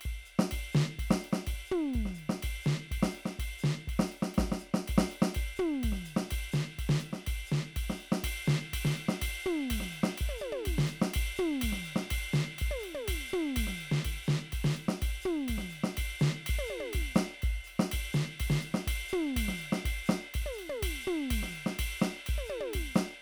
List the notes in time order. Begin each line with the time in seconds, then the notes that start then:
0.01 ride
0.06 kick
0.26 hi-hat pedal, ride
0.39 snare
0.51 kick, ride
0.58 kick
0.72 snare, hi-hat pedal
0.99 kick, ride
1.05 kick
1.11 snare
1.19 hi-hat pedal
1.24 ride
1.33 snare
1.47 kick, ride
1.54 kick
1.66 hi-hat pedal
1.71 floor tom
1.94 kick, ride bell
2.02 kick
2.06 snare
2.15 hi-hat pedal, ride
2.30 snare
2.43 kick, ride
2.50 kick
2.63 snare, hi-hat pedal
2.92 kick, ride
2.98 kick
3.03 snare
3.11 hi-hat pedal
3.15 ride
3.26 snare
3.39 kick, ride
3.45 kick
3.59 hi-hat pedal
3.64 snare
3.88 kick, ride
3.99 snare
4.07 hi-hat pedal
4.12 ride
4.23 snare
4.34 kick, snare, ride
4.44 kick
4.52 snare
4.59 hi-hat pedal
4.74 snare
4.88 kick, ride
4.95 kick, snare
5.09 hi-hat pedal, ride
5.22 snare
5.35 kick, ride
5.43 kick
5.57 hi-hat pedal, floor tom
5.83 kick, ride
5.91 kick, snare
6.05 hi-hat pedal, ride
6.17 snare
6.31 kick, ride
6.38 kick
6.52 snare, hi-hat pedal
6.79 kick, ride
6.89 snare
6.99 hi-hat pedal, ride
7.13 snare
7.27 kick, ride
7.34 kick
7.47 hi-hat pedal
7.52 snare
7.76 kick, ride
7.82 kick
7.90 snare
7.96 hi-hat pedal
8.00 ride
8.12 snare
8.24 kick, ride
8.45 snare, hi-hat pedal
8.73 kick, ride bell
8.85 snare
8.93 hi-hat pedal
8.97 ride
9.09 snare
9.22 kick, ride bell
9.28 kick
9.41 hi-hat pedal
9.46 floor tom
9.70 kick, ride
9.77 kick, snare
9.91 hi-hat pedal, ride
10.04 snare
10.18 kick, ride
10.28 kick, high tom
10.38 hi-hat pedal, high tom
10.52 high tom
10.65 kick, ride bell
10.74 kick
10.79 snare
10.87 hi-hat pedal, ride
11.02 snare
11.14 kick, ride
11.23 kick
11.37 hi-hat pedal, floor tom
11.62 kick, ride
11.73 snare
11.85 hi-hat pedal, ride
11.96 snare
12.11 kick, ride
12.18 kick
12.33 snare, hi-hat pedal
12.59 kick, ride
12.69 kick, high tom
12.80 hi-hat pedal, ride
12.95 high tom
13.08 kick, ride
13.15 kick
13.28 hi-hat pedal
13.33 floor tom
13.56 kick, ride
13.63 kick
13.67 snare
13.76 hi-hat pedal
13.81 ride
13.92 snare
14.05 kick, ride bell
14.25 snare, hi-hat pedal
14.53 kick, ride
14.65 snare
14.72 hi-hat pedal
14.77 ride
14.89 snare
15.02 kick, ride bell
15.09 kick
15.22 hi-hat pedal, floor tom
15.48 kick, ride bell
15.58 snare
15.70 hi-hat pedal, ride
15.84 snare
15.97 kick, ride
16.04 kick
16.20 snare, hi-hat pedal
16.46 kick, ride
16.56 kick, high tom
16.66 hi-hat pedal, high tom
16.80 high tom
16.93 kick, ride bell
17.02 kick
17.15 snare, hi-hat pedal
17.42 kick, ride bell
17.51 kick
17.64 hi-hat pedal, ride
17.80 snare
17.92 kick, ride
18.00 kick
18.13 snare, hi-hat pedal
18.40 kick, ride
18.47 kick, snare
18.60 hi-hat pedal, ride
18.74 snare
18.88 kick, ride
18.94 kick
19.09 floor tom, hi-hat pedal
19.37 kick, ride
19.43 kick
19.49 snare
19.57 hi-hat pedal
19.62 ride
19.73 snare
19.85 kick, ride
19.92 kick
20.06 snare, hi-hat pedal
20.34 kick, ride
20.42 kick
20.46 high tom
20.54 hi-hat pedal
20.59 ride
20.69 open hi-hat, high tom
20.83 kick, ride
20.89 kick
21.02 hi-hat pedal
21.07 floor tom
21.31 kick, ride
21.38 kick
21.43 snare
21.51 hi-hat pedal
21.55 ride
21.66 snare
21.79 kick, ride
21.86 kick
21.99 snare, hi-hat pedal
22.27 kick, ride
22.36 kick, high tom
22.46 hi-hat pedal, high tom
22.61 high tom
22.74 kick, ride bell
22.81 kick
22.95 snare, hi-hat pedal